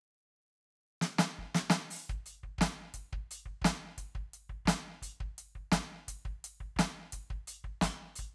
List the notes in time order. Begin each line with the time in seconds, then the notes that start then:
1.01 snare
1.18 snare
1.38 kick
1.55 snare
1.70 snare
1.90 open hi-hat
2.08 kick, hi-hat pedal
2.26 closed hi-hat
2.43 kick
2.58 kick, snare, closed hi-hat
2.94 kick, closed hi-hat
3.13 kick
3.31 closed hi-hat
3.46 kick
3.62 closed hi-hat, kick, snare
3.98 kick, closed hi-hat
4.15 kick
4.33 closed hi-hat
4.49 kick
4.65 closed hi-hat, kick, snare
5.02 closed hi-hat, kick
5.20 kick
5.38 closed hi-hat
5.55 kick
5.72 kick, snare, closed hi-hat
6.08 kick, closed hi-hat
6.25 kick
6.44 closed hi-hat
6.60 kick
6.76 kick, snare, closed hi-hat
7.12 kick, closed hi-hat
7.30 kick
7.47 closed hi-hat
7.64 kick
7.81 closed hi-hat, kick, snare
8.16 closed hi-hat, kick